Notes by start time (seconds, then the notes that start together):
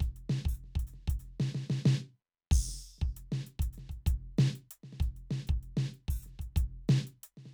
0.01 kick, closed hi-hat
0.17 closed hi-hat
0.30 snare
0.46 kick, open hi-hat
0.55 hi-hat pedal
0.64 snare
0.76 open hi-hat, kick
0.87 hi-hat pedal
0.94 snare
1.08 open hi-hat, kick
1.20 hi-hat pedal
1.25 snare
1.41 snare
1.55 snare
1.71 snare
1.86 snare
2.52 kick, crash
2.69 snare
2.84 closed hi-hat
2.99 kick, snare
3.17 closed hi-hat
3.33 snare
3.47 closed hi-hat
3.60 open hi-hat, kick
3.73 hi-hat pedal
3.79 snare
3.90 kick, closed hi-hat
4.07 open hi-hat, kick
4.39 snare, hi-hat pedal
4.56 closed hi-hat
4.71 closed hi-hat
4.84 snare
4.93 snare
5.01 kick, closed hi-hat
5.17 closed hi-hat
5.31 snare
5.48 kick, closed hi-hat
5.63 closed hi-hat
5.78 snare
5.94 closed hi-hat
6.09 open hi-hat, kick
6.23 snare, hi-hat pedal
6.40 kick, closed hi-hat
6.57 open hi-hat, kick
6.89 snare, hi-hat pedal
7.07 closed hi-hat
7.24 closed hi-hat
7.38 snare
7.46 snare